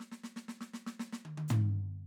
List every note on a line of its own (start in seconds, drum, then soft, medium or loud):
0.01 snare soft
0.12 snare soft
0.23 snare soft
0.36 snare soft
0.48 snare soft
0.61 snare soft
0.73 snare soft
0.86 snare medium
0.99 snare medium
1.12 snare medium
1.25 high tom medium
1.37 closed hi-hat soft
1.37 high tom medium
1.48 floor tom loud
1.48 hi-hat pedal medium